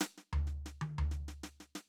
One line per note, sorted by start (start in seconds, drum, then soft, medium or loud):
0.00 snare medium
0.00 hi-hat pedal soft
0.18 snare soft
0.33 floor tom loud
0.47 snare soft
0.66 snare soft
0.81 high tom medium
0.98 floor tom medium
1.11 snare soft
1.28 snare soft
1.44 snare soft
1.60 snare soft
1.75 snare soft